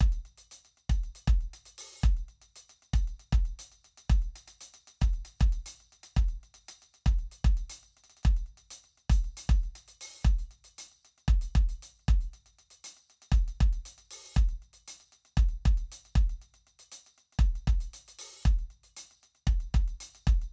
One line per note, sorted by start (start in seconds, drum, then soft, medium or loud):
0.01 kick loud
0.01 closed hi-hat soft
0.13 closed hi-hat medium
0.26 closed hi-hat soft
0.38 closed hi-hat medium
0.52 closed hi-hat medium
0.65 closed hi-hat medium
0.78 closed hi-hat soft
0.90 kick loud
0.90 closed hi-hat medium
1.04 closed hi-hat soft
1.15 closed hi-hat medium
1.28 kick loud
1.28 closed hi-hat soft
1.41 closed hi-hat soft
1.54 closed hi-hat medium
1.66 closed hi-hat medium
1.78 percussion loud
1.93 percussion medium
2.02 kick loud
2.02 closed hi-hat medium
2.02 hi-hat pedal soft
2.17 closed hi-hat soft
2.29 closed hi-hat soft
2.42 closed hi-hat medium
2.56 closed hi-hat medium
2.70 closed hi-hat medium
2.83 closed hi-hat soft
2.94 kick loud
2.94 closed hi-hat medium
3.08 closed hi-hat soft
3.20 closed hi-hat medium
3.33 kick loud
3.33 closed hi-hat soft
3.46 closed hi-hat soft
3.59 closed hi-hat loud
3.72 closed hi-hat medium
3.85 closed hi-hat medium
3.98 closed hi-hat medium
4.10 kick loud
4.10 closed hi-hat medium
4.22 closed hi-hat soft
4.36 closed hi-hat loud
4.48 closed hi-hat medium
4.61 closed hi-hat loud
4.74 closed hi-hat medium
4.88 closed hi-hat medium
5.02 kick loud
5.02 closed hi-hat medium
5.14 closed hi-hat soft
5.25 closed hi-hat medium
5.40 kick loud
5.40 closed hi-hat medium
5.53 closed hi-hat medium
5.66 closed hi-hat loud
5.81 closed hi-hat soft
5.93 closed hi-hat medium
6.04 closed hi-hat loud
6.17 kick loud
6.17 closed hi-hat soft
6.29 closed hi-hat soft
6.43 closed hi-hat soft
6.54 closed hi-hat medium
6.69 closed hi-hat loud
6.82 closed hi-hat medium
6.94 closed hi-hat medium
7.06 kick loud
7.06 closed hi-hat medium
7.19 closed hi-hat soft
7.32 closed hi-hat medium
7.45 kick loud
7.45 closed hi-hat soft
7.57 closed hi-hat medium
7.70 closed hi-hat loud
7.83 closed hi-hat soft
7.97 closed hi-hat soft
8.04 closed hi-hat medium
8.10 closed hi-hat medium
8.17 closed hi-hat medium
8.24 kick loud
8.24 closed hi-hat medium
8.37 closed hi-hat soft
8.46 closed hi-hat soft
8.58 closed hi-hat medium
8.71 closed hi-hat loud
8.84 closed hi-hat soft
8.98 closed hi-hat soft
9.10 closed hi-hat medium
9.10 kick loud
9.25 closed hi-hat soft
9.37 closed hi-hat loud
9.49 kick loud
9.49 closed hi-hat soft
9.64 closed hi-hat soft
9.76 closed hi-hat loud
9.88 closed hi-hat medium
10.01 percussion loud
10.14 percussion medium
10.23 kick loud
10.23 hi-hat pedal soft
10.27 closed hi-hat medium
10.39 closed hi-hat soft
10.51 closed hi-hat medium
10.65 closed hi-hat medium
10.79 closed hi-hat loud
10.92 closed hi-hat soft
11.05 closed hi-hat medium
11.18 closed hi-hat soft
11.28 kick loud
11.28 closed hi-hat soft
11.42 closed hi-hat medium
11.56 kick loud
11.56 closed hi-hat soft
11.69 closed hi-hat medium
11.83 closed hi-hat medium
12.00 closed hi-hat soft
12.09 kick loud
12.09 closed hi-hat soft
12.21 closed hi-hat soft
12.34 closed hi-hat medium
12.46 closed hi-hat medium
12.59 closed hi-hat medium
12.71 closed hi-hat medium
12.85 closed hi-hat loud
12.97 closed hi-hat soft
13.10 closed hi-hat medium
13.22 closed hi-hat medium
13.32 kick loud
13.32 closed hi-hat medium
13.48 closed hi-hat medium
13.61 kick loud
13.61 closed hi-hat soft
13.73 closed hi-hat medium
13.86 closed hi-hat loud
13.98 closed hi-hat medium
14.11 percussion loud
14.24 percussion medium
14.35 kick loud
14.35 closed hi-hat medium
14.35 hi-hat pedal soft
14.49 closed hi-hat soft
14.62 closed hi-hat soft
14.74 closed hi-hat medium
14.88 closed hi-hat loud
15.00 closed hi-hat medium
15.13 closed hi-hat medium
15.25 closed hi-hat soft
15.37 kick loud
15.37 closed hi-hat soft
15.49 closed hi-hat soft
15.65 kick loud
15.65 closed hi-hat soft
15.78 closed hi-hat medium
15.92 closed hi-hat loud
16.06 closed hi-hat medium
16.16 kick loud
16.16 closed hi-hat soft
16.30 closed hi-hat soft
16.42 closed hi-hat medium
16.54 closed hi-hat soft
16.67 closed hi-hat soft
16.79 closed hi-hat medium
16.92 closed hi-hat loud
17.07 closed hi-hat medium
17.18 closed hi-hat soft
17.33 closed hi-hat soft
17.39 kick loud
17.39 closed hi-hat soft
17.56 closed hi-hat soft
17.68 kick loud
17.68 closed hi-hat medium
17.81 closed hi-hat medium
17.94 closed hi-hat loud
18.08 percussion medium
18.19 percussion loud
18.36 percussion soft
18.43 kick loud
18.43 closed hi-hat soft
18.43 hi-hat pedal soft
18.59 closed hi-hat soft
18.71 closed hi-hat soft
18.84 closed hi-hat soft
18.97 closed hi-hat loud
19.11 closed hi-hat soft
19.23 closed hi-hat medium
19.35 closed hi-hat soft
19.47 kick loud
19.47 closed hi-hat soft
19.61 closed hi-hat soft
19.74 kick loud
19.74 closed hi-hat medium
19.88 closed hi-hat soft
20.01 closed hi-hat loud
20.15 closed hi-hat medium
20.27 kick loud
20.27 closed hi-hat medium
20.42 closed hi-hat soft